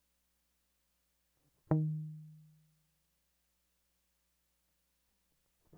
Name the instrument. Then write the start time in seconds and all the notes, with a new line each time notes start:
electric guitar
1.72 D#3